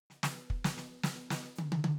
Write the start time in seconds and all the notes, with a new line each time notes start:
0.10 snare
0.23 snare
0.35 snare
0.50 kick, snare
0.64 snare
0.77 snare
1.04 snare
1.15 snare
1.30 snare
1.43 snare
1.56 hi-hat pedal, high tom
1.72 high tom
1.84 high tom